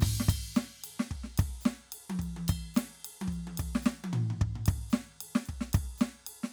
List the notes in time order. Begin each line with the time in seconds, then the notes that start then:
0.01 kick, crash
0.20 snare
0.29 kick, ride bell
0.55 snare, percussion
0.84 ride
1.00 snare
1.11 kick
1.24 snare
1.38 kick, ride
1.62 percussion
1.66 snare
1.93 ride
2.10 high tom
2.19 kick, ride
2.37 high tom
2.49 kick, ride bell
2.75 snare, ride, percussion
3.05 ride
3.22 high tom
3.28 kick
3.33 ride
3.47 high tom
3.58 kick, ride
3.76 snare
3.83 snare, percussion
4.04 high tom
4.13 floor tom
4.31 floor tom
4.42 kick
4.56 floor tom
4.66 kick, ride
4.91 snare, percussion
5.21 ride
5.36 snare
5.46 kick, ride
5.61 snare
5.74 kick, ride
5.98 snare, percussion
6.27 ride
6.44 snare